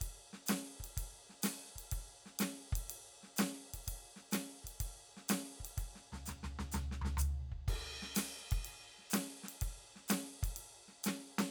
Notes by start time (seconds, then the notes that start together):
0.01 kick, ride
0.33 snare
0.46 snare, hi-hat pedal, ride
0.80 kick
0.84 ride
0.97 kick, ride
1.29 snare
1.42 snare, hi-hat pedal, ride
1.76 kick, ride
1.92 kick, ride
2.26 snare
2.39 snare, hi-hat pedal, ride
2.72 kick, ride
2.87 hi-hat pedal, ride
3.23 snare
3.36 snare, hi-hat pedal, ride
3.74 kick, ride
3.83 hi-hat pedal
3.88 kick, ride
4.16 snare
4.31 snare, hi-hat pedal, ride
4.64 kick, ride
4.80 kick, ride
5.17 snare
5.29 snare, hi-hat pedal, ride
5.60 kick
5.65 ride
5.77 kick, ride
5.95 snare
6.12 snare, floor tom
6.26 snare, floor tom, hi-hat pedal
6.43 snare, floor tom
6.59 snare, floor tom
6.72 snare, floor tom, hi-hat pedal
6.91 snare
7.02 snare, floor tom
7.17 floor tom, hi-hat pedal
7.52 kick
7.68 kick, ride
8.02 snare
8.15 snare, hi-hat pedal, ride
8.51 kick, ride
8.65 ride
8.98 snare
9.10 snare, hi-hat pedal, ride
9.44 snare
9.48 ride
9.61 kick, ride
9.96 snare
10.08 snare, hi-hat pedal, ride
10.43 kick, ride
10.54 hi-hat pedal, ride
10.88 snare
11.04 snare, hi-hat pedal, ride
11.38 snare, ride